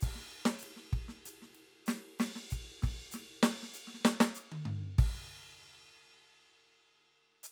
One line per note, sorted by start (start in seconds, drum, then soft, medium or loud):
0.01 kick medium
0.01 hi-hat pedal medium
0.01 crash medium
0.15 snare soft
0.19 snare soft
0.31 ride soft
0.46 snare loud
0.59 hi-hat pedal medium
0.63 ride medium
0.77 snare soft
0.93 kick medium
0.93 ride soft
1.09 snare soft
1.26 hi-hat pedal medium
1.26 ride medium
1.42 snare soft
1.55 ride soft
1.86 snare medium
1.86 hi-hat pedal medium
1.86 ride medium
2.20 snare loud
2.20 ride medium
2.36 snare soft
2.51 kick soft
2.51 hi-hat pedal medium
2.51 ride soft
2.83 kick medium
2.83 snare soft
2.83 ride medium
3.12 snare soft
3.12 hi-hat pedal medium
3.12 ride medium
3.43 snare loud
3.43 ride medium
3.63 snare soft
3.74 hi-hat pedal medium
3.74 ride soft
3.88 snare soft
3.95 snare soft
4.01 snare soft
4.05 snare loud
4.21 snare loud
4.35 cross-stick soft
4.35 hi-hat pedal medium
4.52 high tom medium
4.66 floor tom medium
4.99 kick loud
4.99 crash medium
7.44 hi-hat pedal medium